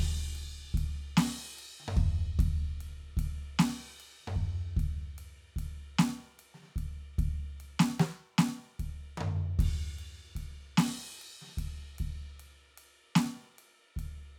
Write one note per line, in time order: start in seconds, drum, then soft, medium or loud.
0.21 kick soft
0.35 ride soft
0.74 kick loud
0.74 ride medium
1.17 snare loud
1.17 crash loud
1.32 snare soft
1.58 ride medium
1.80 high tom soft
1.88 floor tom loud
1.97 kick loud
2.39 kick loud
2.39 ride medium
2.81 ride medium
3.17 kick medium
3.17 ride medium
3.59 snare loud
3.59 crash medium
3.73 snare soft
4.00 ride medium
4.20 high tom soft
4.27 floor tom loud
4.36 kick medium
4.76 kick loud
4.76 ride medium
5.18 ride medium
5.56 kick medium
5.56 ride medium
5.99 snare loud
5.99 ride medium
6.37 snare soft
6.37 ride medium
6.54 snare soft
6.59 snare soft
6.62 snare soft
6.76 kick medium
6.76 ride medium
7.18 kick loud
7.18 ride medium
7.60 ride soft
7.79 snare loud
8.00 snare loud
8.38 snare loud
8.38 ride medium
8.79 kick medium
8.79 ride medium
9.17 floor tom loud
9.17 high tom loud
9.59 kick loud
9.59 ride medium
9.59 crash medium
9.98 ride soft
10.35 kick medium
10.35 ride medium
10.77 snare loud
10.77 crash medium
11.21 ride medium
11.41 snare soft
11.46 snare soft
11.50 snare soft
11.57 kick medium
11.57 ride medium
11.98 kick medium
11.98 ride medium
12.20 snare soft
12.39 ride medium
12.78 ride medium
13.15 snare loud
13.15 ride medium
13.58 ride medium
13.96 kick medium
13.96 ride medium
14.19 snare soft